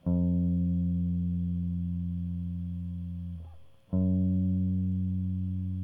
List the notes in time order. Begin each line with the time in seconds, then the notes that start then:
0.09 F2
3.95 F#2